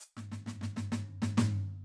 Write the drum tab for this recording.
Hi-hat    |p-----------|
Snare     |-ggoooo-oo--|
Floor tom |-oooooo-oo--|